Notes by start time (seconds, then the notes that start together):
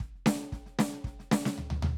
0.00 kick, snare
0.15 snare
0.26 snare
0.42 snare
0.52 kick, snare
0.66 snare
0.79 snare
0.93 snare
1.04 kick, snare
1.19 snare
1.31 snare
1.45 snare
1.58 floor tom
1.70 floor tom
1.82 floor tom